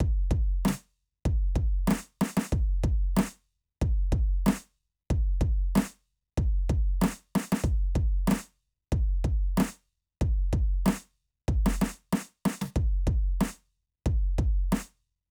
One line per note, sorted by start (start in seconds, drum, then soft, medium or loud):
0.01 kick loud
0.32 kick loud
0.66 snare loud
0.69 snare loud
1.26 kick loud
1.56 kick loud
1.88 snare loud
1.91 snare loud
2.22 snare loud
2.38 snare loud
2.53 kick loud
2.84 kick loud
3.17 snare loud
3.20 snare loud
3.82 kick loud
4.13 kick loud
4.47 snare loud
4.49 snare loud
5.11 kick loud
5.42 kick loud
5.76 snare loud
5.78 snare loud
6.38 kick loud
6.70 kick loud
7.02 snare loud
7.05 snare loud
7.36 snare loud
7.53 snare loud
7.64 kick loud
7.96 kick loud
8.28 snare loud
8.32 snare loud
8.93 kick loud
9.25 kick loud
9.58 snare loud
9.61 snare loud
10.22 kick loud
10.54 kick loud
10.87 snare loud
10.89 snare loud
11.49 kick loud
11.67 snare loud
11.82 snare loud
12.13 snare loud
12.46 snare loud
12.62 snare loud
12.77 kick loud
13.08 kick loud
13.41 snare loud
14.07 kick loud
14.39 kick loud
14.73 snare loud